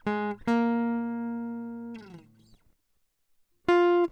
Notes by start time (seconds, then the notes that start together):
0.08 G#3
0.50 A#3
1.96 G#3
2.17 E3
3.70 F4